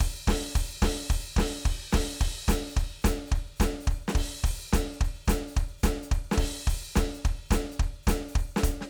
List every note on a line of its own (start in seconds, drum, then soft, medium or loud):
0.01 open hi-hat loud
0.01 kick loud
0.27 kick loud
0.27 snare loud
0.27 hi-hat pedal medium
0.27 crash loud
0.56 open hi-hat loud
0.56 kick loud
0.81 kick loud
0.81 snare loud
0.81 hi-hat pedal medium
0.81 crash loud
1.11 open hi-hat loud
1.11 kick loud
1.34 kick loud
1.34 hi-hat pedal soft
1.39 snare loud
1.39 crash loud
1.66 kick loud
1.66 crash medium
1.92 kick loud
1.92 snare loud
1.92 hi-hat pedal medium
1.92 crash loud
2.21 kick loud
2.21 crash loud
2.48 closed hi-hat loud
2.48 kick loud
2.48 snare loud
2.48 hi-hat pedal medium
2.70 open hi-hat medium
2.77 open hi-hat medium
2.77 kick loud
3.02 closed hi-hat loud
3.02 kick loud
3.02 snare loud
3.02 hi-hat pedal medium
3.27 open hi-hat medium
3.33 open hi-hat medium
3.33 kick loud
3.58 closed hi-hat loud
3.58 kick loud
3.58 snare loud
3.58 hi-hat pedal medium
3.81 open hi-hat medium
3.88 open hi-hat medium
3.88 kick loud
4.08 snare loud
4.08 hi-hat pedal medium
4.16 kick loud
4.16 crash loud
4.45 open hi-hat loud
4.45 kick loud
4.70 kick loud
4.70 snare loud
4.70 hi-hat pedal medium
4.75 closed hi-hat loud
4.93 open hi-hat medium
5.02 open hi-hat medium
5.02 kick loud
5.26 closed hi-hat loud
5.26 kick loud
5.26 snare loud
5.26 hi-hat pedal soft
5.48 open hi-hat medium
5.57 open hi-hat medium
5.57 kick loud
5.80 closed hi-hat loud
5.80 kick loud
5.80 snare loud
5.80 hi-hat pedal soft
6.04 closed hi-hat medium
6.12 open hi-hat medium
6.12 kick loud
6.32 snare loud
6.32 hi-hat pedal soft
6.38 kick loud
6.38 crash loud
6.68 open hi-hat loud
6.68 kick loud
6.94 closed hi-hat loud
6.94 kick loud
6.94 snare loud
6.94 hi-hat pedal soft
7.15 open hi-hat medium
7.25 open hi-hat medium
7.25 kick loud
7.50 closed hi-hat loud
7.50 kick loud
7.50 snare loud
7.50 hi-hat pedal soft
7.73 closed hi-hat medium
7.80 open hi-hat medium
7.80 kick loud
8.04 kick loud
8.04 hi-hat pedal soft
8.08 closed hi-hat loud
8.08 snare loud
8.29 open hi-hat medium
8.36 open hi-hat medium
8.36 kick loud
8.57 snare loud
8.57 hi-hat pedal soft
8.64 closed hi-hat loud
8.64 kick loud
8.82 snare medium